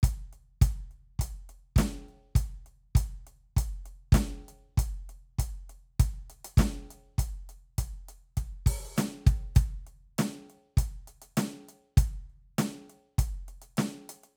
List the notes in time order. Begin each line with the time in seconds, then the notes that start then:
0.03 kick, closed hi-hat
0.33 closed hi-hat
0.61 kick, closed hi-hat
0.91 closed hi-hat
1.19 kick, closed hi-hat
1.49 closed hi-hat
1.76 kick, snare, closed hi-hat
2.08 closed hi-hat
2.35 kick, closed hi-hat
2.66 closed hi-hat
2.95 kick, closed hi-hat
3.27 closed hi-hat
3.56 kick, closed hi-hat
3.86 closed hi-hat
4.12 kick, snare, closed hi-hat
4.48 closed hi-hat
4.77 kick, closed hi-hat
5.09 closed hi-hat
5.38 kick, closed hi-hat
5.69 closed hi-hat
6.00 kick, closed hi-hat
6.30 closed hi-hat
6.45 closed hi-hat
6.57 kick, snare, closed hi-hat
6.91 closed hi-hat
7.18 kick, closed hi-hat
7.49 closed hi-hat
7.78 kick, closed hi-hat
8.09 closed hi-hat
8.37 kick, closed hi-hat
8.66 kick, open hi-hat
8.96 snare, closed hi-hat, hi-hat pedal
9.27 kick, open hi-hat
9.55 kick, closed hi-hat, hi-hat pedal
9.87 closed hi-hat
10.18 snare, closed hi-hat
10.50 closed hi-hat
10.77 kick, closed hi-hat
11.07 closed hi-hat
11.22 closed hi-hat
11.37 snare, closed hi-hat
11.69 closed hi-hat
11.97 kick, closed hi-hat
12.30 closed hi-hat
12.58 snare, closed hi-hat
12.90 closed hi-hat
13.18 kick, closed hi-hat
13.48 closed hi-hat
13.62 closed hi-hat
13.77 snare, closed hi-hat
14.09 closed hi-hat
14.23 closed hi-hat